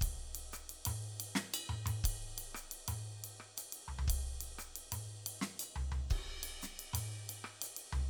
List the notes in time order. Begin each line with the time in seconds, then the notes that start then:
0.01 kick, ride
0.35 ride
0.53 cross-stick, hi-hat pedal
0.69 ride
0.85 mid tom, ride
1.20 ride
1.35 snare
1.53 hi-hat pedal, ride bell
1.69 mid tom
1.86 mid tom, ride
2.04 kick, ride
2.38 ride
2.54 cross-stick, hi-hat pedal
2.71 ride
2.88 mid tom, ride
3.24 ride
3.40 cross-stick
3.57 hi-hat pedal, ride
3.72 ride
3.88 floor tom
3.99 floor tom
4.08 kick, ride
4.41 ride
4.58 cross-stick, hi-hat pedal
4.76 ride
4.92 mid tom, ride
5.26 ride
5.41 snare
5.59 hi-hat pedal, ride bell
5.76 floor tom
5.92 floor tom
6.10 kick, ride
6.43 ride
6.62 snare, hi-hat pedal
6.79 ride
6.93 mid tom, ride
7.29 ride
7.44 cross-stick
7.62 hi-hat pedal, ride
7.76 ride
7.92 floor tom